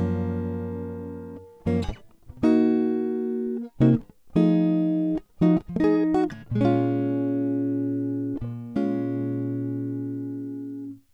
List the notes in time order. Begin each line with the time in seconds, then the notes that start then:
0.00 F#2 F3 A#3 C#4
1.67 F#2 F3 A#3 C#4
2.38 C3
2.44 A#3 D#4 F#4
3.82 C3 A#3 D#4 F#4
4.37 F3 D#4 G#4
5.43 F3 D#4 F#4
5.71 F3
5.81 D#4 G#4
6.16 F#4
6.32 D3
6.53 A#2
6.62 C#4 F4
6.75 G#3
8.43 A#2
8.77 G#3 C#4 F4